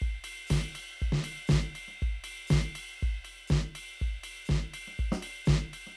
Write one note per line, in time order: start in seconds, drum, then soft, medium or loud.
0.01 kick soft
0.01 ride soft
0.24 ride bell loud
0.47 kick soft
0.47 snare loud
0.47 hi-hat pedal medium
0.47 ride loud
0.75 ride bell medium
1.00 kick soft
1.00 ride soft
1.12 snare medium
1.24 ride bell loud
1.48 snare loud
1.48 hi-hat pedal medium
1.48 ride medium
1.52 kick soft
1.75 ride bell medium
1.88 snare soft
2.01 kick medium
2.01 ride soft
2.24 ride bell loud
2.47 snare loud
2.47 hi-hat pedal loud
2.47 ride medium
2.52 kick medium
2.75 ride bell loud
3.01 kick medium
3.01 ride soft
3.25 ride bell medium
3.48 kick soft
3.48 snare loud
3.48 hi-hat pedal medium
3.48 ride soft
3.75 ride bell loud
4.00 kick soft
4.00 ride soft
4.24 ride bell loud
4.46 snare loud
4.46 hi-hat pedal medium
4.51 kick soft
4.74 ride bell medium
4.88 snare soft
4.98 kick soft
4.98 ride soft
5.12 snare medium
5.22 ride bell loud
5.46 kick medium
5.46 snare loud
5.46 hi-hat pedal medium
5.73 ride bell medium
5.87 snare soft
5.94 hi-hat pedal soft